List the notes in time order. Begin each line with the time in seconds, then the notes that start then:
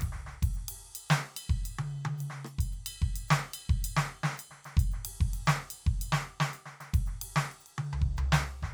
0.01 kick, hi-hat pedal, ride
0.12 snare
0.26 snare
0.42 kick, ride
0.53 snare, hi-hat pedal
0.68 ride
0.95 ride bell
1.09 snare, hi-hat pedal
1.37 ride bell
1.49 kick
1.64 hi-hat pedal, ride bell
1.79 high tom
1.89 hi-hat pedal
2.05 high tom
2.18 hi-hat pedal, ride
2.30 snare
2.45 cross-stick, ride
2.59 kick, ride bell
2.72 hi-hat pedal
2.86 ride bell
3.02 kick
3.16 ride bell
3.28 snare, hi-hat pedal
3.54 ride bell
3.69 kick
3.83 hi-hat pedal, ride bell
3.97 snare
4.23 snare
4.37 hi-hat pedal, ride bell
4.49 kick, snare
4.65 snare, ride
4.77 kick, ride bell
4.91 snare, hi-hat pedal
5.05 ride
5.20 kick
5.34 ride
5.46 snare, hi-hat pedal
5.70 ride bell
5.86 kick
6.01 hi-hat pedal, ride bell
6.12 snare
6.40 snare
6.53 hi-hat pedal, ride bell
6.66 snare
6.80 snare, ride bell
6.94 kick, ride
7.06 snare, hi-hat pedal
7.21 ride
7.36 snare
7.51 ride
7.60 hi-hat pedal
7.66 ride
7.78 high tom
7.84 hi-hat pedal
7.93 floor tom
8.01 kick
8.17 floor tom, hi-hat pedal
8.32 snare
8.62 kick, snare